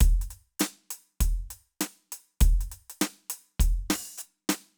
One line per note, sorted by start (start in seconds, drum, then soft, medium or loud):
0.01 kick loud
0.01 closed hi-hat loud
0.22 closed hi-hat medium
0.31 closed hi-hat medium
0.60 closed hi-hat loud
0.60 snare loud
0.91 closed hi-hat loud
1.21 kick medium
1.21 closed hi-hat loud
1.51 closed hi-hat medium
1.81 snare loud
1.81 closed hi-hat loud
2.12 closed hi-hat medium
2.41 kick loud
2.41 closed hi-hat loud
2.61 closed hi-hat medium
2.72 closed hi-hat medium
2.90 closed hi-hat medium
3.02 snare loud
3.02 closed hi-hat loud
3.30 closed hi-hat loud
3.60 kick loud
3.60 closed hi-hat loud
3.91 snare loud
3.91 open hi-hat loud
4.18 hi-hat pedal loud
4.50 snare loud
4.50 closed hi-hat loud